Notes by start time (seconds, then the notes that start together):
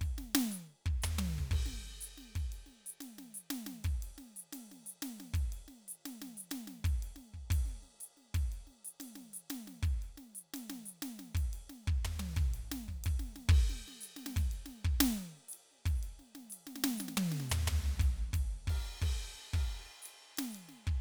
0.01 kick, ride
0.18 snare
0.35 snare
0.51 hi-hat pedal, ride
0.86 kick
1.02 floor tom, hi-hat pedal
1.19 high tom
1.38 kick
1.51 kick, crash
1.66 snare
1.86 snare
2.01 hi-hat pedal, ride
2.18 snare
2.35 kick, ride
2.52 ride
2.66 snare
2.86 hi-hat pedal
3.01 snare, ride
3.18 snare
3.34 hi-hat pedal
3.50 snare, ride
3.66 snare
3.84 kick, ride
4.02 ride
4.18 snare
4.36 hi-hat pedal
4.53 snare, ride
4.72 snare
4.86 hi-hat pedal
5.02 snare, ride
5.20 snare
5.34 kick, ride
5.52 ride
5.68 snare
5.88 hi-hat pedal
6.06 snare, ride
6.22 snare
6.37 hi-hat pedal
6.51 snare, ride
6.67 snare
6.84 kick, ride
7.02 ride
7.16 snare
7.34 kick
7.50 kick, ride
7.65 kick, snare
7.82 snare
8.00 hi-hat pedal, ride
8.17 snare
8.34 kick, ride
8.52 ride
8.67 snare
8.85 hi-hat pedal
9.00 snare, ride
9.05 hi-hat pedal
9.16 snare
9.33 hi-hat pedal
9.50 snare, ride
9.67 snare
9.83 kick, ride
10.02 ride
10.18 snare
10.35 hi-hat pedal
10.54 snare, ride
10.70 snare
10.86 hi-hat pedal
11.02 snare, ride
11.19 snare
11.35 kick, ride
11.53 ride
11.69 snare
11.87 kick
12.05 floor tom
12.19 high tom
12.36 kick, ride
12.54 ride
12.72 snare
12.88 kick
13.04 kick, ride
13.19 snare
13.36 snare
13.49 kick, crash
13.69 snare
13.88 snare
14.01 hi-hat pedal, ride
14.16 snare
14.26 snare
14.36 kick, ride
14.51 ride
14.66 snare
14.85 kick
15.00 snare, ride
15.36 snare
15.49 hi-hat pedal
15.53 ride
15.71 snare
15.86 kick, ride
15.96 hi-hat pedal
16.03 ride
16.19 snare
16.35 snare
16.50 hi-hat pedal, ride
16.67 snare
16.76 snare
16.84 snare
16.97 snare, hi-hat pedal
17.08 snare
17.17 high tom
17.32 snare
17.40 snare
17.45 snare
17.49 floor tom, hi-hat pedal
17.67 floor tom
17.83 snare
17.99 kick, ride
18.15 snare
18.33 kick, ride
18.67 kick, crash
19.02 kick, crash
19.36 snare
19.54 kick, crash
20.02 hi-hat pedal, ride
20.38 snare, ride
20.51 hi-hat pedal, ride
20.69 snare
20.87 kick